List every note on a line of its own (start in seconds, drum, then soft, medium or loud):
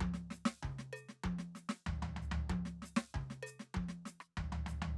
0.01 kick soft
0.01 high tom medium
0.07 kick soft
0.14 snare soft
0.31 snare soft
0.31 hi-hat pedal soft
0.46 snare medium
0.63 kick soft
0.63 mid tom medium
0.70 kick soft
0.79 snare soft
0.93 hi-hat pedal soft
0.93 percussion medium
1.09 snare soft
1.24 kick soft
1.24 high tom medium
1.39 snare soft
1.55 snare soft
1.55 hi-hat pedal medium
1.69 snare medium
1.87 kick soft
1.87 floor tom medium
2.03 floor tom medium
2.17 floor tom medium
2.22 hi-hat pedal soft
2.32 floor tom medium
2.50 kick soft
2.50 high tom loud
2.66 snare soft
2.83 snare soft
2.83 hi-hat pedal medium
2.97 snare medium
3.15 kick soft
3.15 mid tom medium
3.22 kick soft
3.31 snare soft
3.43 hi-hat pedal medium
3.43 percussion medium
3.60 snare soft
3.75 kick soft
3.75 high tom medium
3.89 snare soft
4.06 snare soft
4.06 hi-hat pedal medium
4.21 cross-stick medium
4.38 kick soft
4.38 floor tom medium
4.53 floor tom medium
4.67 floor tom medium
4.67 hi-hat pedal medium
4.82 floor tom medium